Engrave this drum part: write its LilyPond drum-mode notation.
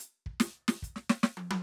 \new DrumStaff \drummode { \time 4/4 \tempo 4 = 144 \tuplet 3/2 { hh8 r8 bd8 <sn hh>8 r8 sn8 <bd hh>8 sn8 sn8 sn8 tommh8 tommh8 } | }